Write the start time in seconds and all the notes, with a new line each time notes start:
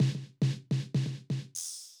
0.00 snare
0.15 snare
0.42 snare
0.71 snare
0.95 snare
1.06 snare
1.30 snare
1.55 crash